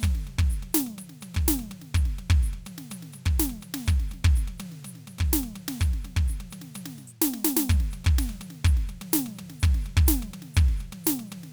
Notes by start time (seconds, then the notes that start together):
0.01 kick, hi-hat pedal, high tom
0.15 snare
0.22 hi-hat pedal
0.27 high tom
0.39 kick, high tom
0.50 snare, hi-hat pedal
0.63 high tom
0.73 snare, hi-hat pedal
0.87 high tom
0.98 hi-hat pedal, high tom
1.10 snare
1.21 hi-hat pedal, high tom
1.35 kick, high tom
1.48 snare, hi-hat pedal
1.56 snare, high tom
1.64 kick
1.70 hi-hat pedal, high tom
1.82 snare
1.95 kick, hi-hat pedal, high tom
2.06 snare
2.16 hi-hat pedal, high tom
2.30 kick, high tom
2.43 snare, hi-hat pedal
2.53 high tom
2.66 hi-hat pedal, high tom
2.78 snare
2.91 hi-hat pedal, high tom
3.03 snare
3.13 hi-hat pedal, high tom
3.26 kick, high tom
3.39 snare, hi-hat pedal
3.50 high tom
3.62 hi-hat pedal, high tom
3.74 snare
3.87 kick, hi-hat pedal, high tom
4.00 snare
4.08 hi-hat pedal, high tom
4.14 snare
4.25 kick, high tom
4.36 snare, hi-hat pedal
4.48 high tom
4.58 hi-hat pedal, high tom
4.72 snare
4.85 hi-hat pedal, high tom
4.96 snare
5.08 hi-hat pedal, high tom
5.19 kick, high tom
5.33 snare, hi-hat pedal
5.44 high tom
5.54 kick, hi-hat pedal, high tom
5.68 snare
5.80 kick, hi-hat pedal, high tom
5.94 snare
6.01 hi-hat pedal, high tom
6.05 snare
6.17 kick, high tom
6.28 snare, hi-hat pedal
6.40 high tom
6.51 hi-hat pedal, high tom
6.62 snare
6.75 hi-hat pedal, high tom
6.86 snare
6.98 snare, hi-hat pedal
7.08 closed hi-hat
7.22 snare, hi-hat pedal
7.34 snare
7.45 snare, hi-hat pedal
7.57 snare
7.69 kick, hi-hat pedal, high tom
7.80 snare
7.91 hi-hat pedal, high tom
8.05 kick, high tom
8.19 snare, hi-hat pedal
8.29 high tom
8.41 hi-hat pedal, high tom
8.51 snare
8.65 kick, hi-hat pedal, high tom
8.77 snare
8.88 hi-hat pedal, high tom
9.02 high tom
9.13 snare, hi-hat pedal
9.26 high tom
9.34 hi-hat pedal
9.39 kick, high tom
9.50 snare
9.60 kick, hi-hat pedal
9.65 high tom
9.75 snare
9.81 hi-hat pedal
9.86 high tom
9.97 kick, high tom
10.07 snare, hi-hat pedal
10.23 high tom
10.28 hi-hat pedal
10.34 high tom
10.42 snare
10.54 kick, hi-hat pedal, high tom
10.69 snare
10.77 hi-hat pedal, high tom
10.93 high tom
11.04 snare, hi-hat pedal
11.20 high tom
11.28 hi-hat pedal
11.32 high tom
11.44 snare